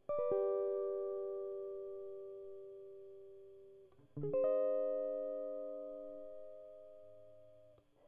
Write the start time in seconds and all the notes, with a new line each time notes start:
0.10 D5
0.19 B4
0.30 G4
4.23 G#4
4.34 C5
4.45 D#5